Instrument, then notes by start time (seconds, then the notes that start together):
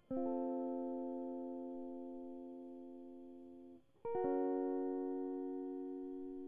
electric guitar
0.10 C4
0.19 F4
0.27 A4
4.06 A#4
4.15 F#4
4.26 C#4